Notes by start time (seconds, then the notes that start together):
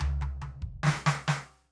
0.00 floor tom, high tom
0.21 floor tom, high tom
0.42 floor tom, high tom
0.62 kick
0.83 snare
0.87 snare
1.06 snare
1.28 snare